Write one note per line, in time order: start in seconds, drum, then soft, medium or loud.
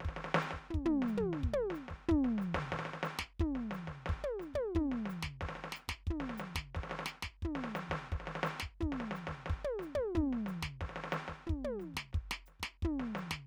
0.01 snare soft
0.05 kick soft
0.05 snare soft
0.17 snare soft
0.25 snare soft
0.42 hi-hat pedal soft
0.51 kick soft
0.51 snare soft
0.70 floor tom medium
0.75 kick soft
0.86 floor tom loud
1.03 snare soft
1.08 hi-hat pedal medium
1.18 kick soft
1.18 mid tom loud
1.34 snare soft
1.44 kick soft
1.54 high tom loud
1.71 snare soft
1.75 hi-hat pedal soft
1.89 kick soft
1.89 snare soft
2.08 kick soft
2.08 floor tom loud
2.25 snare soft
2.39 snare soft
2.39 hi-hat pedal soft
2.55 kick soft
2.55 snare medium
2.71 kick soft
2.71 snare medium
2.79 snare medium
2.86 snare soft
2.94 snare soft
3.04 snare medium
3.04 hi-hat pedal soft
3.19 kick soft
3.19 snare medium
3.40 kick soft
3.40 floor tom medium
3.56 snare soft
3.71 snare soft
3.71 hi-hat pedal soft
3.88 kick soft
3.88 snare soft
4.06 kick soft
4.06 snare medium
4.24 high tom medium
4.40 snare soft
4.40 hi-hat pedal soft
4.54 kick soft
4.54 high tom loud
4.76 kick soft
4.76 floor tom loud
4.92 snare soft
5.06 snare soft
5.06 hi-hat pedal medium
5.23 kick soft
5.23 snare medium
5.41 kick soft
5.41 snare soft
5.49 snare soft
5.56 snare soft
5.64 snare soft
5.73 snare medium
5.73 hi-hat pedal medium
5.89 kick soft
5.89 snare medium
6.07 kick soft
6.07 floor tom medium
6.21 snare soft
6.30 snare soft
6.38 snare soft
6.38 hi-hat pedal medium
6.56 kick soft
6.56 snare medium
6.75 kick soft
6.75 snare soft
6.84 snare soft
6.90 snare soft
6.92 snare medium
7.00 snare soft
7.06 snare medium
7.06 hi-hat pedal medium
7.23 kick soft
7.23 snare medium
7.43 kick soft
7.43 floor tom medium
7.56 snare soft
7.64 snare soft
7.76 snare medium
7.76 hi-hat pedal medium
7.90 kick soft
7.90 snare medium
8.12 kick soft
8.12 snare soft
8.21 snare soft
8.26 snare soft
8.36 snare soft
8.44 snare medium
8.44 hi-hat pedal medium
8.60 kick soft
8.60 snare medium
8.80 kick soft
8.80 floor tom medium
8.93 snare soft
9.01 snare soft
9.12 snare medium
9.16 hi-hat pedal soft
9.28 kick soft
9.28 snare medium
9.46 kick soft
9.46 snare soft
9.65 high tom loud
9.80 snare soft
9.80 hi-hat pedal medium
9.95 kick soft
9.95 high tom loud
10.15 kick soft
10.15 floor tom loud
10.33 snare soft
10.47 snare soft
10.47 hi-hat pedal medium
10.63 kick soft
10.63 snare medium
10.81 kick soft
10.81 snare soft
10.90 snare soft
10.96 snare soft
11.04 snare soft
11.12 snare medium
11.12 hi-hat pedal soft
11.28 kick soft
11.28 snare soft
11.47 kick soft
11.47 floor tom medium
11.65 high tom medium
11.80 snare soft
11.80 hi-hat pedal soft
11.95 kick soft
11.95 snare medium
12.13 kick soft
12.13 snare soft
12.32 snare medium
12.46 snare soft
12.46 hi-hat pedal soft
12.60 kick soft
12.60 snare medium
12.83 kick soft
12.83 floor tom medium
13.00 snare soft
13.16 snare medium
13.16 hi-hat pedal soft
13.31 kick soft
13.31 snare medium